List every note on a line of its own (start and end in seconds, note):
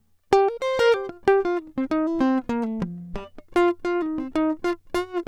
0.34 0.50 G4
0.50 0.60 A#4
0.64 0.94 C5
0.81 0.94 A#4
0.94 1.16 G4
0.94 1.15 C5
1.29 1.48 G4
1.47 1.58 F4
1.58 1.75 D#4
1.79 1.90 C4
1.93 2.08 D#4
2.09 2.30 E4
2.22 2.44 C4
2.51 2.64 A#3
2.65 2.91 A3
2.84 3.19 F3
3.17 3.33 G3
3.58 3.77 F4
3.86 4.03 F4
4.03 4.29 D#4
4.20 4.33 C4
4.37 4.59 D#4
4.66 4.80 F4
4.96 5.26 F#4